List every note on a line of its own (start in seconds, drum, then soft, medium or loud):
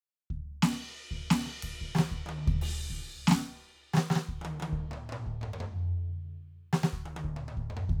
0.31 kick medium
0.63 snare loud
0.63 ride medium
1.12 kick medium
1.31 snare loud
1.31 ride medium
1.47 snare soft
1.63 kick medium
1.63 ride loud
1.82 kick medium
1.95 snare loud
1.99 snare loud
2.12 kick medium
2.27 high tom medium
2.29 high tom loud
2.48 kick loud
2.62 crash loud
2.91 kick medium
3.28 snare loud
3.32 snare loud
3.94 snare loud
3.97 snare loud
4.11 snare loud
4.16 snare loud
4.29 kick medium
4.42 high tom medium
4.45 high tom loud
4.60 high tom medium
4.63 high tom loud
4.73 kick medium
4.92 mid tom medium
4.94 mid tom medium
5.10 mid tom medium
5.13 mid tom loud
5.27 kick medium
5.42 floor tom medium
5.43 floor tom medium
5.54 floor tom medium
5.61 floor tom loud
6.73 snare loud
6.84 snare loud
6.93 kick medium
7.06 high tom medium
7.17 high tom loud
7.25 kick medium
7.37 mid tom medium
7.49 mid tom medium
7.58 kick medium
7.71 floor tom medium
7.77 floor tom loud
7.90 kick loud